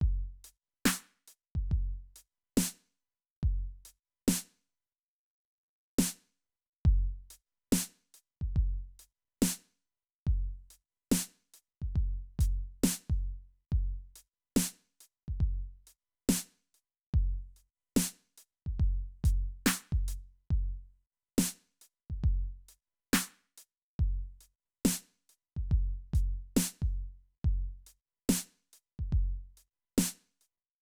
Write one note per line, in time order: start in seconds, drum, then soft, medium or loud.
0.02 kick medium
0.45 closed hi-hat medium
0.86 snare loud
1.28 closed hi-hat medium
1.56 kick medium
1.72 kick medium
2.16 closed hi-hat medium
2.58 snare loud
3.43 kick medium
3.86 closed hi-hat medium
4.28 snare loud
5.99 snare loud
6.86 kick medium
6.86 ride soft
7.31 closed hi-hat medium
7.73 snare loud
8.14 closed hi-hat soft
8.42 kick soft
8.56 kick medium
9.00 closed hi-hat medium
9.42 snare loud
10.27 kick medium
10.27 crash soft
10.27 ride soft
10.71 closed hi-hat medium
11.12 snare loud
11.54 closed hi-hat medium
11.82 kick soft
11.96 kick medium
12.39 closed hi-hat medium
12.39 kick medium
12.39 snare soft
12.84 snare loud
13.10 kick medium
13.72 kick medium
13.72 ride soft
14.16 closed hi-hat medium
14.57 snare loud
15.01 closed hi-hat soft
15.28 kick soft
15.41 kick medium
15.87 closed hi-hat medium
16.29 snare loud
16.75 closed hi-hat soft
17.14 kick medium
17.14 crash soft
17.14 ride soft
17.57 closed hi-hat soft
17.97 snare loud
18.38 closed hi-hat medium
18.67 kick soft
18.80 kick medium
18.80 crash soft
19.24 closed hi-hat medium
19.24 kick medium
19.66 snare loud
19.93 kick medium
20.08 closed hi-hat medium
20.51 kick medium
20.51 crash soft
21.38 snare loud
21.82 closed hi-hat medium
22.10 kick soft
22.24 kick medium
22.69 closed hi-hat medium
23.14 snare loud
23.58 closed hi-hat medium
24.00 kick medium
24.00 crash soft
24.41 closed hi-hat soft
24.85 snare loud
25.30 closed hi-hat soft
25.57 kick soft
25.72 kick medium
26.14 kick medium
26.14 snare soft
26.14 closed hi-hat medium
26.57 snare loud
26.82 kick medium
27.45 kick medium
27.87 closed hi-hat soft
28.29 snare loud
28.73 closed hi-hat soft
28.99 kick soft
29.13 kick medium
29.58 closed hi-hat soft
29.98 snare loud
30.41 closed hi-hat soft